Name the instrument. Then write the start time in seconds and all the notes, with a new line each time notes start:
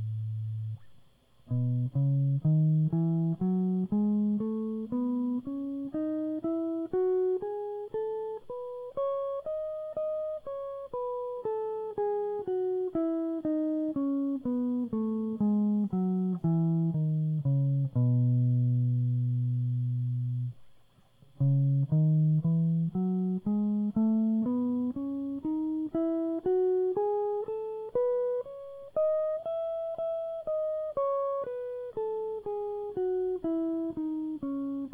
electric guitar
1.53 B2
1.97 C#3
2.46 D#3
2.93 E3
3.42 F#3
3.93 G#3
4.41 A3
4.92 B3
5.47 C#4
5.94 D#4
6.44 E4
6.93 F#4
7.42 G#4
7.94 A4
8.97 C#5
9.46 D#5
9.97 D#5
10.94 B4
11.45 A4
11.98 G#4
12.48 F#4
12.95 E4
13.45 D#4
13.96 C#4
14.46 B3
14.93 A3
15.41 G#3
15.93 F#3
16.45 E3
16.96 D#3
17.47 C#3
17.97 B2
21.42 C#3
21.93 D#3
22.46 E3
22.95 F#3
23.47 G#3
23.97 A3
24.46 B3
24.97 C#4
25.45 D#4
25.95 E4
26.46 F#4
26.97 G#4
27.48 A4
27.96 B4
28.44 C#5
28.96 D#5
29.46 E5
29.98 E5
30.47 D#5
30.97 C#5
31.44 B4
31.97 A4
32.46 G#4
32.97 F#4
33.44 E4
33.97 D#4
34.43 C#4